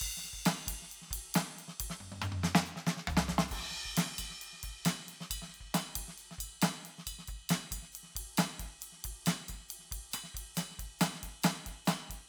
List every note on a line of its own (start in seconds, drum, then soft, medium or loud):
0.01 kick soft
0.01 hi-hat pedal soft
0.01 ride medium
0.10 kick soft
0.12 kick soft
0.17 snare soft
0.24 snare soft
0.24 ride soft
0.33 kick soft
0.45 snare loud
0.45 hi-hat pedal soft
0.45 ride bell loud
0.67 kick soft
0.67 ride loud
0.74 kick soft
0.82 snare soft
0.89 hi-hat pedal soft
0.89 ride medium
1.01 snare soft
1.07 kick soft
1.07 snare soft
1.13 kick soft
1.13 ride loud
1.34 snare loud
1.34 hi-hat pedal soft
1.34 ride loud
1.59 ride medium
1.68 snare soft
1.80 kick soft
1.80 hi-hat pedal soft
1.80 ride loud
1.86 kick soft
1.86 snare medium
2.00 high tom medium
2.12 high tom medium
2.22 hi-hat pedal medium
2.22 high tom loud
2.32 high tom medium
2.43 snare loud
2.55 snare loud
2.65 hi-hat pedal medium
2.76 snare medium
2.87 snare loud
2.97 snare medium
3.07 kick soft
3.07 hi-hat pedal soft
3.07 mid tom loud
3.17 snare loud
3.27 kick soft
3.27 snare loud
3.38 snare loud
3.48 kick soft
3.48 hi-hat pedal soft
3.48 ride loud
3.57 kick soft
3.62 cross-stick soft
3.70 snare soft
3.85 kick soft
3.97 snare loud
3.97 hi-hat pedal soft
3.97 ride loud
4.06 snare soft
4.18 kick soft
4.18 ride bell loud
4.24 kick soft
4.30 snare soft
4.41 hi-hat pedal soft
4.41 ride medium
4.52 snare soft
4.57 snare soft
4.63 kick soft
4.63 ride medium
4.69 kick soft
4.85 snare loud
4.85 hi-hat pedal soft
4.85 ride bell loud
5.08 ride medium
5.20 snare medium
5.30 kick soft
5.30 hi-hat pedal soft
5.30 ride bell loud
5.36 kick soft
5.42 snare soft
5.48 snare soft
5.54 ride soft
5.60 kick soft
5.74 snare medium
5.74 hi-hat pedal medium
5.74 ride bell loud
5.95 kick soft
5.95 ride loud
6.08 snare soft
6.18 hi-hat pedal soft
6.18 ride soft
6.31 snare soft
6.38 kick soft
6.38 ride bell medium
6.44 kick soft
6.62 snare loud
6.62 hi-hat pedal soft
6.62 ride bell loud
6.85 ride medium
6.98 snare soft
7.06 kick soft
7.06 hi-hat pedal soft
7.06 ride bell loud
7.12 kick soft
7.18 snare soft
7.28 kick soft
7.28 ride bell medium
7.34 kick soft
7.38 kick soft
7.49 snare loud
7.49 hi-hat pedal medium
7.49 ride bell loud
7.71 kick soft
7.71 ride bell medium
7.78 kick soft
7.82 snare soft
7.92 hi-hat pedal soft
7.92 ride medium
8.03 snare soft
8.09 snare soft
8.15 kick soft
8.15 ride loud
8.21 kick soft
8.37 snare loud
8.37 hi-hat pedal medium
8.37 ride bell loud
8.59 kick soft
8.59 ride medium
8.65 kick soft
8.80 hi-hat pedal soft
8.80 ride medium
8.92 snare soft
8.97 snare soft
9.04 kick soft
9.04 ride loud
9.11 kick soft
9.25 snare loud
9.25 hi-hat pedal medium
9.25 ride bell loud
9.48 kick soft
9.48 ride bell medium
9.55 kick soft
9.60 snare soft
9.68 hi-hat pedal soft
9.68 ride medium
9.78 snare soft
9.83 snare soft
9.87 snare soft
9.91 kick soft
9.91 ride loud
9.98 kick soft
10.01 kick soft
10.11 cross-stick medium
10.11 hi-hat pedal medium
10.11 ride bell loud
10.23 snare soft
10.34 kick soft
10.34 ride medium
10.40 kick soft
10.55 snare loud
10.55 hi-hat pedal medium
10.55 ride bell loud
10.70 snare soft
10.79 kick soft
10.79 ride medium
10.85 kick soft
10.99 snare loud
10.99 hi-hat pedal medium
10.99 ride bell loud
11.14 snare soft
11.23 kick soft
11.23 ride medium
11.28 kick soft
11.42 snare loud
11.42 hi-hat pedal medium
11.42 ride bell loud
11.55 snare soft
11.66 kick soft
11.66 ride medium
11.71 kick soft
11.85 snare loud
11.85 hi-hat pedal medium
11.85 ride bell loud
12.09 kick soft
12.09 ride medium